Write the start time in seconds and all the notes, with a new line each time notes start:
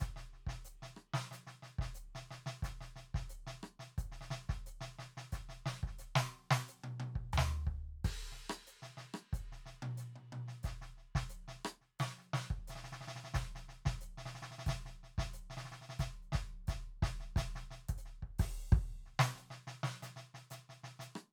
0.01 kick, snare, hi-hat pedal
0.17 snare
0.34 snare
0.47 kick, snare
0.65 hi-hat pedal
0.83 snare, hi-hat pedal
0.97 cross-stick
1.14 snare
1.32 snare, hi-hat pedal
1.48 snare
1.63 snare
1.79 kick, snare
1.95 hi-hat pedal
2.16 snare, hi-hat pedal
2.31 snare
2.47 snare
2.63 kick, snare, hi-hat pedal
2.81 snare
2.97 snare
3.15 kick, snare
3.30 hi-hat pedal
3.48 snare
3.64 cross-stick
3.80 snare
3.99 kick, hi-hat pedal
4.12 snare
4.22 snare
4.31 snare
4.50 kick, snare
4.67 hi-hat pedal
4.82 snare
4.99 snare
5.18 snare
5.33 kick, snare, hi-hat pedal
5.50 snare
5.67 snare
5.84 kick, snare
5.99 snare, hi-hat pedal
6.16 snare, hi-hat pedal
6.51 snare
6.69 hi-hat pedal
6.84 high tom
7.01 high tom
7.16 kick
7.33 floor tom, hi-hat pedal
7.38 snare
7.68 kick
8.05 kick, hi-hat pedal, crash
8.33 snare
8.50 cross-stick
8.68 hi-hat pedal
8.83 snare
8.98 snare
9.15 cross-stick
9.33 kick, hi-hat pedal
9.53 snare
9.67 snare
9.83 high tom
9.98 snare, hi-hat pedal
10.16 high tom
10.33 high tom
10.48 snare
10.64 kick, snare, hi-hat pedal
10.82 snare
10.98 snare
11.16 kick, snare
11.30 hi-hat pedal
11.49 snare
11.66 cross-stick
11.82 snare
12.00 snare, hi-hat pedal
12.19 snare, hi-hat pedal
12.34 snare
12.51 kick
12.68 snare, hi-hat pedal
12.76 snare
12.84 snare
12.93 snare
13.02 snare
13.08 snare
13.16 snare
13.25 snare
13.35 kick, snare, hi-hat pedal
13.56 snare, hi-hat pedal
13.69 snare
13.86 kick, snare
14.02 hi-hat pedal
14.18 snare
14.26 snare
14.35 snare
14.43 snare
14.52 snare
14.59 snare
14.67 kick, snare, hi-hat pedal
14.86 snare
15.04 snare
15.19 kick, snare
15.34 hi-hat pedal
15.51 snare
15.58 snare, hi-hat pedal
15.66 snare
15.72 snare
15.82 snare
15.90 snare
16.00 kick, snare, hi-hat pedal
16.23 hi-hat pedal
16.33 kick, snare
16.68 kick, snare, hi-hat pedal
17.03 kick, snare
17.21 snare
17.37 kick, snare, hi-hat pedal
17.56 snare
17.71 snare
17.89 kick, open hi-hat
17.98 hi-hat pedal
18.06 snare
18.23 kick
18.39 open hi-hat, kick, snare
18.73 kick
19.06 snare
19.20 snare
19.36 snare, hi-hat pedal
19.51 snare
19.68 snare
19.84 snare
20.03 snare, hi-hat pedal
20.17 snare
20.35 snare
20.51 snare, hi-hat pedal
20.70 snare
20.84 snare
21.00 snare, hi-hat pedal
21.16 cross-stick